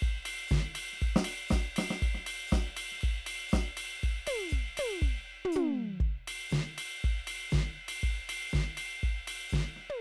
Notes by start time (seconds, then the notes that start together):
0.01 kick, ride
0.16 snare
0.25 ride
0.48 kick, snare, hi-hat pedal, ride
0.70 snare
0.75 ride
0.93 snare
1.01 kick, ride
1.16 snare
1.24 ride
1.49 kick, snare, hi-hat pedal, ride
1.76 snare, ride
1.91 snare
1.96 hi-hat pedal
2.02 kick, ride
2.15 snare
2.26 ride
2.48 hi-hat pedal, ride
2.52 kick, snare
2.69 snare
2.77 ride
2.92 snare
3.01 kick, ride
3.26 ride
3.49 hi-hat pedal, ride
3.53 kick, snare
3.77 ride
4.03 kick, ride
4.27 high tom, ride
4.49 kick, hi-hat pedal
4.77 high tom, ride
5.02 kick
5.44 floor tom
5.52 floor tom, hi-hat pedal
6.00 kick
6.28 ride
6.50 kick, snare, hi-hat pedal
6.78 ride
6.99 hi-hat pedal
7.04 kick
7.27 ride
7.51 kick, snare, hi-hat pedal
7.88 ride
8.03 kick
8.29 ride
8.49 snare, hi-hat pedal
8.54 kick
8.77 ride
9.03 kick
9.27 ride
9.49 kick, hi-hat pedal
9.54 snare
9.76 snare
9.89 high tom